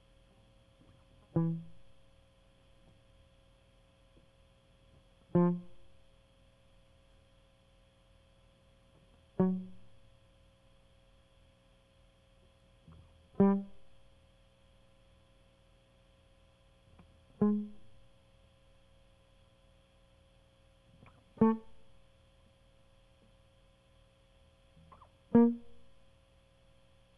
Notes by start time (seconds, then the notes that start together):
1.37 E3
5.36 F3
9.40 F#3
13.40 G3
17.42 G#3
21.42 A3
25.35 A#3